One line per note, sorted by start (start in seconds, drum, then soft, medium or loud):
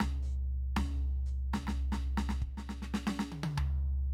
0.00 snare medium
0.00 floor tom loud
0.23 hi-hat pedal soft
0.77 snare medium
0.77 floor tom loud
1.26 hi-hat pedal soft
1.53 snare medium
1.53 floor tom medium
1.67 snare medium
1.67 floor tom medium
1.92 snare medium
1.92 floor tom medium
2.17 snare medium
2.17 floor tom medium
2.29 snare medium
2.29 floor tom medium
2.42 kick soft
2.57 snare soft
2.69 snare soft
2.82 snare soft
2.94 snare medium
3.07 snare medium
3.19 snare medium
3.32 closed hi-hat soft
3.32 high tom medium
3.43 high tom medium
3.58 floor tom loud